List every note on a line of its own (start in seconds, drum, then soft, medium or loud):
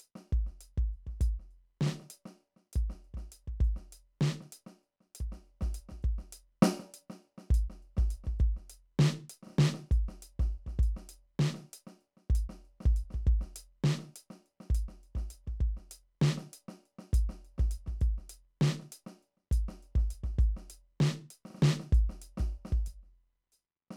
0.04 closed hi-hat soft
0.15 snare soft
0.32 kick medium
0.32 closed hi-hat soft
0.46 snare soft
0.61 closed hi-hat medium
0.78 kick medium
0.94 closed hi-hat soft
1.06 kick soft
1.06 snare soft
1.21 closed hi-hat medium
1.21 kick medium
1.39 snare soft
1.51 closed hi-hat soft
1.81 snare medium
1.86 snare soft
2.00 snare soft
2.10 closed hi-hat medium
2.25 snare soft
2.40 closed hi-hat soft
2.56 snare soft
2.73 closed hi-hat medium
2.73 kick medium
2.90 snare soft
3.04 closed hi-hat soft
3.14 kick soft
3.14 snare soft
3.32 closed hi-hat medium
3.47 kick soft
3.60 kick medium
3.60 closed hi-hat soft
3.76 snare soft
3.92 closed hi-hat medium
4.21 snare loud
4.41 snare soft
4.52 closed hi-hat medium
4.66 snare soft
4.83 closed hi-hat soft
5.00 snare soft
5.15 closed hi-hat medium
5.20 kick soft
5.32 snare soft
5.46 closed hi-hat soft
5.61 kick soft
5.61 snare soft
5.74 closed hi-hat medium
5.89 kick soft
5.89 snare soft
6.03 kick soft
6.03 closed hi-hat soft
6.18 snare soft
6.32 closed hi-hat medium
6.62 snare loud
6.79 snare soft
6.94 closed hi-hat medium
7.10 snare soft
7.23 closed hi-hat soft
7.38 snare soft
7.50 closed hi-hat medium
7.50 kick medium
7.70 snare soft
7.82 closed hi-hat soft
7.97 kick medium
7.97 snare soft
8.10 closed hi-hat medium
8.24 kick soft
8.24 snare soft
8.39 kick medium
8.39 closed hi-hat soft
8.56 snare soft
8.70 closed hi-hat medium
8.99 snare loud
9.04 snare soft
9.29 closed hi-hat medium
9.43 snare soft
9.47 snare soft
9.50 snare soft
9.58 snare loud
9.74 snare soft
9.91 closed hi-hat soft
9.91 kick medium
10.08 snare soft
10.22 closed hi-hat medium
10.39 kick medium
10.39 snare soft
10.66 kick soft
10.66 snare soft
10.79 kick medium
10.79 closed hi-hat soft
10.96 snare soft
11.09 closed hi-hat medium
11.39 snare loud
11.54 snare soft
11.58 snare soft
11.73 closed hi-hat medium
11.87 snare soft
12.01 closed hi-hat soft
12.17 snare soft
12.30 kick medium
12.35 closed hi-hat medium
12.49 snare soft
12.65 closed hi-hat soft
12.80 snare soft
12.85 kick medium
12.96 closed hi-hat soft
13.10 kick soft
13.10 snare soft
13.26 kick medium
13.26 closed hi-hat soft
13.41 snare soft
13.56 closed hi-hat medium
13.84 snare loud
13.99 snare soft
14.03 snare soft
14.16 closed hi-hat medium
14.30 snare soft
14.46 closed hi-hat soft
14.60 snare soft
14.70 kick medium
14.75 closed hi-hat medium
14.88 snare soft
15.03 closed hi-hat soft
15.15 kick soft
15.15 snare soft
15.30 closed hi-hat medium
15.47 kick soft
15.47 snare soft
15.60 kick medium
15.64 closed hi-hat soft
15.77 snare soft
15.91 closed hi-hat medium
16.21 snare loud
16.38 snare soft
16.53 closed hi-hat medium
16.68 snare soft
16.85 closed hi-hat soft
16.99 snare soft
17.13 closed hi-hat medium
17.13 kick medium
17.29 snare soft
17.45 closed hi-hat soft
17.58 kick medium
17.58 snare soft
17.71 closed hi-hat medium
17.86 kick soft
17.86 snare soft
18.01 kick medium
18.01 closed hi-hat soft
18.18 snare soft
18.29 closed hi-hat medium
18.61 snare loud
18.68 snare soft
18.80 snare soft
18.92 closed hi-hat medium
19.06 snare soft
19.23 closed hi-hat soft
19.37 snare soft
19.51 closed hi-hat medium
19.51 kick medium
19.68 snare soft
19.82 closed hi-hat soft
19.95 kick medium
19.95 snare soft
20.10 closed hi-hat medium
20.23 kick soft
20.23 snare soft
20.39 closed hi-hat soft
20.39 kick medium
20.57 snare soft
20.70 closed hi-hat medium
21.00 snare loud
21.30 closed hi-hat medium
21.45 snare soft
21.50 snare soft
21.55 snare soft
21.58 snare soft
21.62 snare loud
21.80 snare soft
21.92 closed hi-hat soft
21.92 kick medium
22.09 snare soft
22.22 closed hi-hat medium
22.37 kick soft
22.37 snare soft
22.54 closed hi-hat soft
22.65 snare soft
22.72 kick medium
22.86 closed hi-hat medium
22.86 kick soft
23.03 snare soft
23.52 hi-hat pedal soft
23.91 snare soft